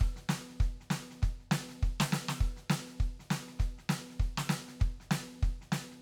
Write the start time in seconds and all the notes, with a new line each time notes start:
0.01 kick, snare
0.16 snare
0.29 snare
0.49 snare
0.60 kick, snare
0.81 snare
0.90 kick, snare
1.11 snare
1.22 kick, snare
1.40 snare
1.51 snare
1.69 snare
1.83 kick, snare
2.00 snare
2.12 snare
2.29 snare
2.41 kick, snare
2.57 snare
2.70 snare
2.88 snare
3.00 kick, snare
3.20 snare
3.31 snare
3.48 snare
3.59 kick, snare
3.78 snare
3.89 snare
4.10 snare
4.20 kick, snare
4.38 snare
4.49 snare
4.68 snare
4.80 kick, snare
5.00 snare
5.11 snare
5.32 snare
5.43 kick, snare
5.61 snare
5.72 snare
5.91 snare